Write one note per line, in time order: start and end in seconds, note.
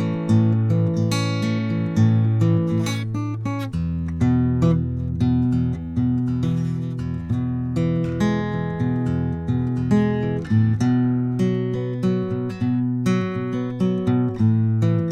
0.00 0.56 E3
0.30 0.92 A2
0.71 1.62 E3
0.98 1.92 A2
1.12 2.80 C#4
1.72 2.26 E3
1.98 2.62 A2
2.26 3.05 E3
2.73 3.72 A2
2.87 3.07 C#4
3.15 3.40 D4
3.47 3.77 C#4
3.75 5.49 E2
4.08 5.18 B2
4.63 5.54 E3
5.22 5.75 B2
5.54 6.22 E2
5.75 5.82 B2
6.29 6.95 E2
6.44 7.12 E3
7.01 8.00 E2
7.31 8.74 B2
7.77 8.43 E3
8.07 9.00 E2
8.55 10.13 E3
8.81 9.37 B2
9.08 9.71 E2
9.50 10.43 B2
9.78 10.86 E2
10.24 10.46 E3
10.47 10.78 D3
10.52 10.77 A2
10.82 12.26 B2
11.40 11.96 F#3
12.04 12.62 F#3
12.32 12.52 B2
12.62 13.23 B2
13.21 14.01 B2
13.21 13.76 F#3
13.81 14.38 F#3
14.08 14.30 B2
14.30 15.04 A2
14.38 14.68 E3
14.97 15.12 E3